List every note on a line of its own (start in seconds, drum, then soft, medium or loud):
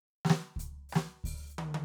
0.25 snare loud
0.30 snare loud
0.57 open hi-hat medium
0.57 kick medium
0.89 cross-stick medium
0.89 hi-hat pedal soft
0.96 snare loud
1.25 open hi-hat medium
1.25 kick medium
1.50 hi-hat pedal soft
1.59 high tom loud
1.75 high tom loud